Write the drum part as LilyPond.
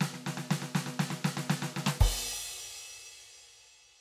\new DrumStaff \drummode { \time 4/4 \tempo 4 = 120 sn16 sn16 sn16 sn16 sn16 sn16 sn16 sn16 sn16 sn16 sn16 sn16 sn16 sn16 sn16 sn16 | <cymc bd>4 r4 r4 r4 | }